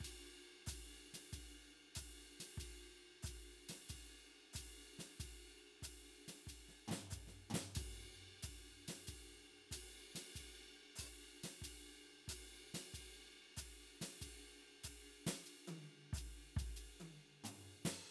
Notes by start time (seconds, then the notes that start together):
0.01 kick
0.05 ride
0.67 kick, hi-hat pedal, ride
1.14 snare, ride
1.33 kick, ride
1.96 kick, hi-hat pedal, ride
2.40 snare, ride
2.58 kick, ride
3.23 kick, hi-hat pedal, ride
3.69 snare, ride
3.90 kick, ride
4.54 kick, hi-hat pedal, ride
4.99 snare, ride
5.20 kick, ride
5.83 kick, hi-hat pedal, ride
6.28 snare, ride
6.47 kick, ride
6.69 snare
6.88 snare, floor tom
7.11 kick, hi-hat pedal, ride
7.28 snare
7.51 floor tom
7.55 snare
7.76 kick, ride
8.43 kick, hi-hat pedal, ride
8.88 snare, ride
9.08 kick, ride
9.72 kick, hi-hat pedal, ride
10.16 snare, ride
10.36 kick, ride
10.96 kick, hi-hat pedal, ride
11.44 snare, ride
11.62 kick, ride
12.28 kick, hi-hat pedal, ride
12.75 snare, ride
12.94 kick, ride
13.57 kick, hi-hat pedal, ride
14.02 snare, ride
14.22 kick, ride
14.84 kick, hi-hat pedal, ride
15.27 snare, ride
15.46 ride
15.68 high tom
16.13 kick, hi-hat pedal
16.18 ride
16.57 kick, ride
16.77 ride
17.01 high tom
17.44 floor tom, hi-hat pedal, ride
17.85 snare, crash